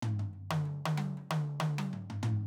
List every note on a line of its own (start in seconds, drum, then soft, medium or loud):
0.00 floor tom loud
0.19 floor tom medium
0.33 high tom soft
0.50 mid tom loud
0.65 high tom soft
0.85 mid tom loud
0.97 high tom loud
1.17 high tom soft
1.31 mid tom loud
1.60 mid tom loud
1.78 high tom loud
1.93 floor tom medium
2.10 floor tom medium
2.23 floor tom loud